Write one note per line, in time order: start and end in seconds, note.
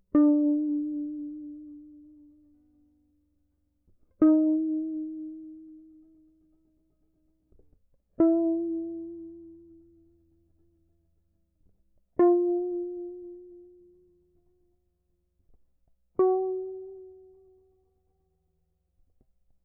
0.14 0.70 D4
0.71 2.09 D4
4.23 6.06 D#4
8.21 8.71 E4
8.72 9.84 E4
12.20 12.74 F4
12.74 13.97 F4
16.19 17.37 F#4